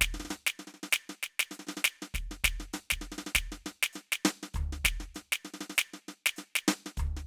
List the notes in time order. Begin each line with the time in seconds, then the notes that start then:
0.01 kick, snare
0.14 snare
0.20 snare
0.25 snare
0.30 snare, hi-hat pedal
0.47 snare
0.59 snare
0.67 snare
0.74 snare
0.83 snare
0.91 snare, hi-hat pedal
1.09 snare
1.23 snare
1.40 snare
1.51 snare, hi-hat pedal
1.59 snare
1.67 snare
1.69 snare
1.84 snare
2.02 snare
2.14 kick, snare, hi-hat pedal
2.20 kick
2.23 kick
2.31 snare
2.44 kick, snare
2.54 kick
2.60 snare
2.73 snare, hi-hat pedal
2.90 kick, snare
3.01 snare
3.12 snare
3.18 snare
3.26 snare
3.35 kick, snare, hi-hat pedal
3.41 kick
3.52 snare
3.66 snare
3.83 snare
3.93 snare, hi-hat pedal
4.12 snare
4.25 snare
4.43 snare
4.54 kick, floor tom, hi-hat pedal
4.61 kick
4.64 kick
4.72 snare
4.85 kick, snare
4.92 kick
5.00 snare
5.15 snare, hi-hat pedal
5.32 snare
5.45 snare
5.54 snare
5.61 snare
5.70 snare
5.75 snare, hi-hat pedal
5.94 snare
6.08 snare
6.26 snare
6.36 snare, hi-hat pedal
6.56 snare
6.68 snare
6.86 snare
6.97 kick, floor tom, hi-hat pedal
7.07 kick
7.17 snare